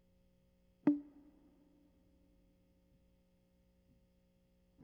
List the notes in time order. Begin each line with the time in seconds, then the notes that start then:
0.88 D4